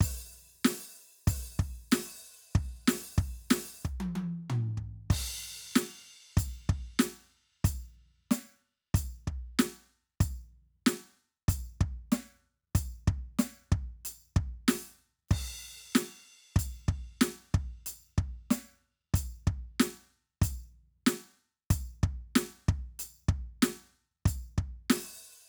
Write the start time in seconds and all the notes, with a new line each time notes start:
0.01 kick, percussion
0.65 snare, percussion
1.28 kick, percussion
1.60 kick
1.92 snare, percussion
2.55 kick
2.88 snare, percussion
3.18 kick
3.51 snare, percussion
3.84 kick, percussion
4.01 high tom
4.16 high tom
4.50 floor tom
4.78 kick
5.11 kick, crash
5.76 snare, percussion
6.37 kick, percussion
6.70 kick
7.00 snare, percussion
7.65 kick, percussion
8.31 snare, percussion
8.95 kick, percussion
9.28 kick
9.59 snare, percussion
10.21 kick, percussion
10.87 snare, percussion
11.49 kick, percussion
11.81 kick
12.12 snare, percussion
12.75 kick, percussion
13.08 kick
13.39 snare, percussion
13.72 kick
14.05 percussion
14.37 kick
14.68 snare, percussion
15.29 kick, crash, percussion
15.95 snare, percussion
16.56 kick, percussion
16.89 kick
17.21 snare, percussion
17.55 kick
17.87 percussion
18.18 kick
18.51 snare, percussion
19.14 kick, percussion
19.47 kick
19.80 snare, percussion
20.42 kick, percussion
21.07 snare, percussion
21.71 kick, percussion
22.04 kick
22.36 snare, percussion
22.69 kick
23.00 percussion
23.29 kick
23.63 snare, percussion
24.26 kick, percussion
24.58 kick
24.90 snare, percussion